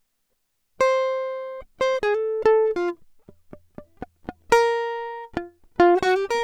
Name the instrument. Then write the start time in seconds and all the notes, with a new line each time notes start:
acoustic guitar
0.81 C5
1.81 C5
2.04 G#4
2.15 A4
2.46 A4
2.77 F4
4.53 A#4
5.38 F4
5.80 F4
6.04 F#4
6.31 A#4